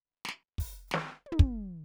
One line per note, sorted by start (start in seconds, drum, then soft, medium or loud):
0.25 snare medium
0.29 snare medium
0.58 open hi-hat medium
0.58 kick medium
0.87 snare medium
0.87 hi-hat pedal soft
0.94 snare loud
1.26 high tom soft
1.31 floor tom medium
1.39 kick loud